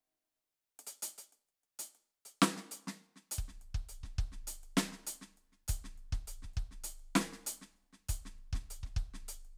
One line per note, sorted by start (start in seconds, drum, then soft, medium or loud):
0.79 closed hi-hat soft
0.87 closed hi-hat medium
1.02 closed hi-hat loud
1.18 closed hi-hat medium
1.32 closed hi-hat soft
1.49 closed hi-hat soft
1.63 closed hi-hat soft
1.79 closed hi-hat medium
1.95 closed hi-hat soft
2.25 closed hi-hat soft
2.42 snare loud
2.57 snare soft
2.71 closed hi-hat medium
2.87 snare medium
3.04 closed hi-hat soft
3.16 snare soft
3.31 closed hi-hat loud
3.38 kick medium
3.48 snare soft
3.61 closed hi-hat soft
3.74 kick medium
3.89 closed hi-hat medium
4.03 kick soft
4.03 snare soft
4.18 kick medium
4.18 closed hi-hat soft
4.32 snare soft
4.47 closed hi-hat medium
4.47 snare soft
4.63 closed hi-hat soft
4.77 snare loud
4.92 snare soft
5.07 closed hi-hat loud
5.21 snare soft
5.37 closed hi-hat soft
5.52 snare soft
5.68 closed hi-hat loud
5.68 kick medium
5.84 snare soft
5.98 closed hi-hat soft
6.12 kick medium
6.12 snare soft
6.27 closed hi-hat medium
6.42 kick soft
6.42 snare soft
6.54 kick medium
6.54 closed hi-hat soft
6.71 snare soft
6.84 closed hi-hat medium
6.99 closed hi-hat soft
7.15 snare loud
7.20 snare medium
7.33 snare soft
7.46 closed hi-hat loud
7.61 snare soft
7.77 closed hi-hat soft
7.93 snare soft
8.09 closed hi-hat medium
8.09 kick medium
8.25 snare soft
8.38 closed hi-hat soft
8.53 kick medium
8.53 snare soft
8.62 kick soft
8.70 closed hi-hat medium
8.83 kick soft
8.83 snare soft
8.96 kick medium
8.96 closed hi-hat soft
9.14 snare soft
9.28 closed hi-hat medium
9.45 closed hi-hat soft